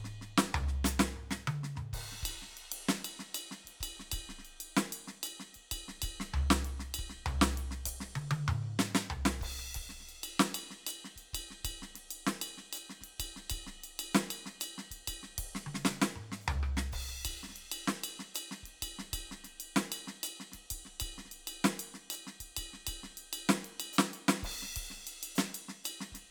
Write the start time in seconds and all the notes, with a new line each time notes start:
0.01 kick
0.03 kick, snare
0.22 snare
0.38 snare
0.55 floor tom
0.68 snare
0.85 kick, snare, hi-hat pedal
1.00 snare
1.17 mid tom
1.31 snare
1.48 high tom
1.64 snare
1.76 snare, mid tom
1.94 kick, hi-hat pedal, crash
2.01 kick
2.12 snare
2.23 kick, ride bell
2.42 snare
2.51 cross-stick
2.58 ride
2.72 ride
2.89 snare
3.05 ride bell
3.20 snare
3.35 hi-hat pedal, ride bell
3.52 snare
3.65 kick, ride
3.69 snare
3.81 kick, hi-hat pedal, ride bell
4.00 snare
4.12 kick, ride bell
4.20 kick
4.30 snare
4.39 snare
4.45 ride bell
4.61 ride bell
4.77 snare
4.93 ride bell
5.08 snare
5.24 hi-hat pedal, ride bell
5.40 snare
5.53 kick, snare, ride bell
5.59 snare
5.72 kick, hi-hat pedal, ride bell
5.89 snare
6.03 kick, ride bell
6.10 kick
6.21 snare
6.34 floor tom
6.51 snare
6.65 ride
6.80 snare
6.95 ride bell
6.99 kick
7.10 snare
7.27 floor tom
7.42 snare
7.52 hi-hat pedal
7.58 ride
7.71 snare
7.86 kick, hi-hat pedal, ride
8.01 snare
8.16 high tom
8.31 high tom
8.49 mid tom
8.63 cross-stick
8.80 snare
8.84 hi-hat pedal
8.95 snare
9.11 floor tom
9.26 snare
9.39 kick, hi-hat pedal
9.43 crash
9.48 kick
9.59 cross-stick
9.75 kick, ride, floor tom
9.83 kick
9.90 snare
10.01 snare
10.09 ride bell
10.24 ride bell
10.40 snare
10.55 ride bell
10.71 snare
10.87 hi-hat pedal, ride bell
11.05 snare
11.17 kick, ride bell
11.21 snare
11.34 kick, ride bell
11.39 kick
11.51 snare
11.65 kick, ride bell
11.71 kick
11.83 snare
11.95 snare, ride
12.11 ride bell
12.27 snare
12.42 ride bell
12.58 snare
12.73 hi-hat pedal, ride bell
12.90 snare
13.01 kick, snare, ride
13.20 kick, ride bell
13.37 snare
13.50 kick, ride bell
13.58 kick
13.67 snare
13.84 ride bell
14.00 ride bell
14.15 snare
14.31 ride bell
14.46 snare
14.61 hi-hat pedal, ride bell
14.79 snare
14.91 kick, ride bell
15.08 kick, ride bell
15.23 snare
15.39 kick, ride
15.45 kick
15.56 snare
15.67 high tom
15.75 snare
15.85 snare
16.02 snare
16.16 mid tom
16.32 snare
16.41 hi-hat pedal
16.48 floor tom
16.64 cross-stick
16.78 snare
16.93 kick, hi-hat pedal, crash
17.04 kick
17.09 cross-stick
17.25 kick, ride bell
17.44 snare
17.50 snare
17.55 snare, ride
17.72 ride bell
17.88 snare
18.04 ride bell
18.20 snare
18.35 hi-hat pedal, ride bell
18.52 snare
18.64 kick, snare, ride
18.83 kick, ride bell
18.99 snare
19.14 kick, ride bell
19.19 kick
19.32 snare
19.45 snare, ride bell
19.61 ride bell
19.77 snare
19.92 ride bell
20.08 snare
20.24 hi-hat pedal, ride bell
20.41 snare
20.52 kick, snare, ride
20.71 kick, ride bell
20.86 snare
21.01 kick, ride bell
21.08 kick
21.18 snare
21.26 snare
21.32 ride bell
21.48 ride bell
21.65 snare
21.80 ride bell
21.95 snare
22.11 hi-hat pedal, ride bell
22.27 snare
22.41 kick, ride bell
22.57 kick, ride bell
22.74 snare
22.87 kick, ride bell
23.04 snare
23.11 snare
23.18 ride bell
23.33 ride bell
23.50 snare
23.58 snare
23.65 ride
23.80 ride bell
23.94 hi-hat pedal
23.99 snare
24.14 ride bell
24.29 snare
24.39 snare
24.43 kick, crash
24.50 kick
24.63 snare
24.77 kick, ride
24.91 snare
24.97 snare
25.03 snare
25.08 ride bell
25.23 ride bell
25.36 snare, hi-hat pedal
25.55 ride bell
25.69 snare
25.85 hi-hat pedal, ride bell
26.01 snare
26.13 kick, snare, ride bell